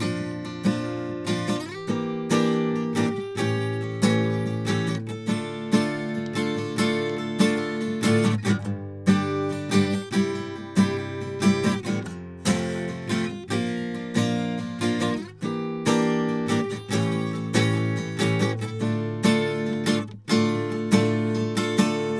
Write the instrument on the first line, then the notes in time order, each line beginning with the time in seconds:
acoustic guitar
0.00 D4 F4
0.04 F2 A#2 F3
0.47 D4 F4
0.66 F2 A#2 F3 D4 F4
1.29 F2 A#2 F3 D4 F4
1.50 F3 D4 F4
1.72 G4
1.90 E3 A#3 D4 G4
2.33 E3 A#3 D4 G4
2.78 G4
2.98 E3 A#3 D4 G4
3.41 A2 E3 C#4 G4
3.84 E3 C#4 G4
4.04 A2 E3 C#4 G4
4.49 C#4 G4
4.67 C#4 G4 A4
4.71 A2 E3
4.89 E3 C#4 G4
4.99 D3
5.08 D#4 A4
5.29 D3 A3 D4 F4 A4
5.74 D3 A3 D4 F4 A4
6.17 A3
6.38 D3 A3 D4 F4 A4
6.57 D3 A3 D4 F4
6.61 A4
6.81 D3 A3 D4 F4 A4
7.17 A4
7.21 D4
7.41 D3 A3 D4 F4 A4
7.56 A4
7.83 A3 D4 F4 A4
8.06 A2 D3 A3 D4 F4 A4
8.26 A2 D3 A3 D4
8.46 C#4
8.50 E2 D3 G3
8.67 G2
9.09 G2 D3 G3 D4 G4
9.51 G2 G3 D4
9.74 G2 D3 G3 D4 G4
9.93 D4 G4
10.14 C3 G3 E4 G4
10.18 G2
10.38 E4
10.56 E4 G4
10.78 G2 C3 G3 E4 G4
10.99 G4
11.23 E4 G4
11.43 G2 C3 G3 E4 G4
11.66 G2 C3 G3 G4
11.88 E2 A2 D3 G3
12.08 F2 C3 F3
12.48 F2 C3 F3 A3 C4 F4
12.91 F2 C3 F3 A3
13.11 C3 F3 A3 C4 F4
13.15 F2
13.26 G#3
13.51 F3 A#3 D4
13.97 A#3 D4 F4
14.18 F3 A#3 D4 F4
14.38 D4 F4
14.60 F3 A#3 D4 F4
14.84 F3 A#3 D4 F4
15.03 F3 A#3 D4 F4
15.44 E3 A#3 D4 G4
15.88 E3 A#3 D4 G4
16.31 A#3
16.52 E3 A#3 D4 G4
16.72 A2 D3 G4
16.94 A2 E3 C#4 G4
17.14 A2 E3
17.33 G4 A4
17.38 A2 E3
17.56 A2 E3 C#4 G4 A4
17.75 A2 G4 A4
17.80 E3
17.98 A2 E3 C#4
18.21 A2 E3 C#4 G4 A4
18.41 A2 E3 C#4 G4 A4
18.61 E4 A4
18.67 A2 D3
18.82 A2 D3 A3 D4 F4
19.25 D3 A3 D4 F4 A4
19.68 D4 F4 A4
19.89 A2 D3 A3 D4 F4 A4
20.30 A2 D3 A3 D4 F4
20.72 D4 F4 A4
20.94 A2 D3 A3 D4 F4 A4
21.37 F4 A4
21.59 D3 A3 D4 F4 A4
21.80 D3 A3 D4 F4 A4